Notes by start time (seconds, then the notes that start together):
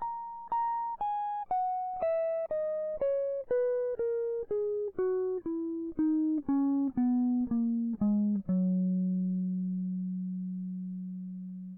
0.03 A#5
0.53 A#5
1.02 G#5
1.52 F#5
2.03 E5
2.52 D#5
3.02 C#5
3.52 B4
4.00 A#4
4.52 G#4
4.99 F#4
5.47 E4
6.00 D#4
6.50 C#4
6.99 B3
7.52 A#3
8.03 G#3
8.51 F#3